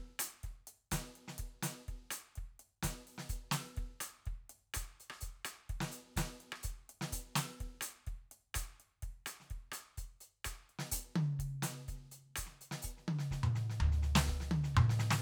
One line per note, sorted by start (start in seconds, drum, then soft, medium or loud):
0.20 closed hi-hat loud
0.20 cross-stick medium
0.44 kick soft
0.44 snare soft
0.44 closed hi-hat soft
0.50 snare soft
0.67 closed hi-hat medium
0.92 closed hi-hat loud
0.92 kick soft
0.92 snare medium
1.03 snare soft
1.16 closed hi-hat soft
1.28 snare medium
1.38 kick soft
1.38 closed hi-hat medium
1.63 closed hi-hat loud
1.63 snare medium
1.88 kick soft
1.88 closed hi-hat soft
2.11 closed hi-hat loud
2.11 cross-stick medium
2.36 kick soft
2.36 closed hi-hat soft
2.60 closed hi-hat soft
2.83 closed hi-hat loud
2.83 kick soft
2.83 snare medium
3.07 open hi-hat soft
3.18 snare medium
3.30 closed hi-hat medium
3.30 kick soft
3.52 closed hi-hat medium
3.52 snare medium
3.74 snare soft
3.74 closed hi-hat soft
3.78 kick soft
4.01 closed hi-hat medium
4.01 cross-stick medium
4.26 kick soft
4.26 closed hi-hat soft
4.50 closed hi-hat soft
4.74 closed hi-hat loud
4.74 kick soft
4.74 cross-stick medium
5.00 closed hi-hat soft
5.10 cross-stick medium
5.21 closed hi-hat medium
5.21 kick soft
5.45 closed hi-hat medium
5.45 cross-stick medium
5.70 kick soft
5.70 closed hi-hat soft
5.81 snare medium
5.92 open hi-hat medium
6.17 closed hi-hat medium
6.17 kick soft
6.17 snare medium
6.41 closed hi-hat soft
6.52 cross-stick medium
6.63 closed hi-hat medium
6.63 kick soft
6.90 open hi-hat soft
7.01 snare medium
7.13 closed hi-hat medium
7.13 kick soft
7.36 closed hi-hat loud
7.36 snare loud
7.61 kick soft
7.61 closed hi-hat soft
7.81 closed hi-hat loud
7.81 cross-stick medium
8.07 kick soft
8.07 closed hi-hat soft
8.32 closed hi-hat soft
8.55 closed hi-hat loud
8.55 kick soft
8.55 cross-stick medium
8.80 closed hi-hat soft
9.03 kick soft
9.03 closed hi-hat soft
9.26 closed hi-hat medium
9.26 cross-stick medium
9.40 snare soft
9.50 kick soft
9.50 closed hi-hat soft
9.72 closed hi-hat medium
9.72 cross-stick medium
9.98 closed hi-hat soft
9.98 kick soft
10.21 closed hi-hat soft
10.45 closed hi-hat medium
10.45 kick soft
10.45 cross-stick medium
10.70 open hi-hat soft
10.79 snare medium
10.92 closed hi-hat loud
10.92 kick soft
11.16 high tom loud
11.39 kick soft
11.39 closed hi-hat medium
11.63 closed hi-hat medium
11.63 snare medium
11.88 closed hi-hat soft
11.88 kick soft
11.96 snare soft
12.12 closed hi-hat soft
12.36 closed hi-hat medium
12.36 kick soft
12.36 cross-stick medium
12.46 snare soft
12.61 closed hi-hat soft
12.72 snare medium
12.83 open hi-hat medium
12.83 kick soft
12.98 snare soft
13.08 high tom loud
13.19 snare soft
13.31 kick soft
13.31 snare soft
13.44 mid tom loud
13.56 snare soft
13.70 snare soft
13.80 kick soft
13.80 floor tom loud
13.92 snare soft
14.03 snare soft
14.16 snare loud
14.27 kick soft
14.27 snare soft
14.27 hi-hat pedal soft
14.41 snare soft
14.51 high tom loud
14.64 snare soft
14.75 kick soft
14.75 mid tom loud
14.90 snare medium
15.00 snare medium
15.11 snare loud